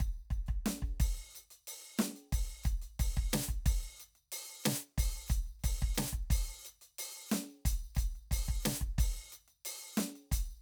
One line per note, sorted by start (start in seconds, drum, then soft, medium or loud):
0.00 kick medium
0.00 closed hi-hat medium
0.30 kick medium
0.30 closed hi-hat soft
0.46 closed hi-hat soft
0.46 kick soft
0.66 closed hi-hat medium
0.66 snare loud
0.82 kick soft
0.82 closed hi-hat soft
1.00 kick medium
1.00 percussion loud
1.35 hi-hat pedal medium
1.35 percussion medium
1.50 closed hi-hat soft
1.67 percussion loud
1.98 closed hi-hat medium
1.98 snare loud
1.98 hi-hat pedal medium
2.15 closed hi-hat soft
2.32 kick medium
2.32 percussion loud
2.64 closed hi-hat medium
2.64 kick medium
2.64 hi-hat pedal medium
2.82 closed hi-hat soft
2.99 kick medium
2.99 percussion loud
3.17 kick medium
3.33 closed hi-hat medium
3.33 snare loud
3.33 hi-hat pedal medium
3.48 closed hi-hat soft
3.48 kick soft
3.66 kick medium
3.66 percussion loud
4.00 hi-hat pedal medium
4.00 percussion medium
4.15 closed hi-hat soft
4.32 percussion loud
4.64 closed hi-hat medium
4.64 snare loud
4.64 hi-hat pedal medium
4.83 closed hi-hat soft
4.98 kick medium
4.98 percussion loud
5.28 closed hi-hat medium
5.28 kick medium
5.28 hi-hat pedal medium
5.46 closed hi-hat soft
5.59 hi-hat pedal soft
5.64 kick medium
5.64 percussion loud
5.82 kick medium
5.95 closed hi-hat medium
5.95 snare loud
5.95 hi-hat pedal medium
6.13 kick soft
6.13 closed hi-hat soft
6.30 kick medium
6.30 percussion loud
6.65 hi-hat pedal medium
6.65 percussion medium
6.81 closed hi-hat soft
6.98 percussion loud
7.29 closed hi-hat medium
7.29 snare loud
7.29 hi-hat pedal medium
7.49 closed hi-hat soft
7.65 kick medium
7.65 percussion loud
7.95 closed hi-hat medium
7.95 kick medium
7.95 hi-hat pedal medium
8.15 closed hi-hat soft
8.31 kick medium
8.31 percussion loud
8.48 kick medium
8.63 closed hi-hat medium
8.63 snare loud
8.63 hi-hat pedal medium
8.81 kick soft
8.81 closed hi-hat soft
8.98 kick medium
8.98 percussion loud
9.32 hi-hat pedal medium
9.32 percussion medium
9.48 closed hi-hat soft
9.65 percussion loud
9.97 closed hi-hat medium
9.97 snare loud
9.97 hi-hat pedal medium
10.15 closed hi-hat soft
10.32 kick medium
10.32 percussion loud